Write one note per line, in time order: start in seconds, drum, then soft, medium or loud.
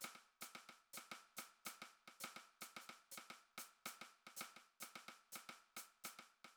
0.01 cross-stick medium
0.01 hi-hat pedal medium
0.15 cross-stick soft
0.41 cross-stick medium
0.41 hi-hat pedal medium
0.55 cross-stick soft
0.69 cross-stick soft
0.94 cross-stick medium
0.94 hi-hat pedal medium
1.12 cross-stick medium
1.37 cross-stick medium
1.37 hi-hat pedal medium
1.65 cross-stick medium
1.65 hi-hat pedal medium
1.82 cross-stick medium
2.08 cross-stick soft
2.20 cross-stick medium
2.20 hi-hat pedal medium
2.36 cross-stick soft
2.61 cross-stick soft
2.61 hi-hat pedal medium
2.77 cross-stick medium
2.81 hi-hat pedal soft
2.89 cross-stick soft
3.12 hi-hat pedal medium
3.18 cross-stick medium
3.30 cross-stick soft
3.58 cross-stick medium
3.58 hi-hat pedal medium
3.86 cross-stick medium
3.86 hi-hat pedal medium
4.01 cross-stick soft
4.27 cross-stick soft
4.37 hi-hat pedal medium
4.41 cross-stick medium
4.56 cross-stick soft
4.80 cross-stick soft
4.80 hi-hat pedal medium
4.96 cross-stick medium
5.08 cross-stick soft
5.32 cross-stick medium
5.32 hi-hat pedal medium
5.49 cross-stick medium
5.77 cross-stick medium
5.77 hi-hat pedal medium
6.04 cross-stick medium
6.04 hi-hat pedal medium
6.19 cross-stick soft
6.45 cross-stick soft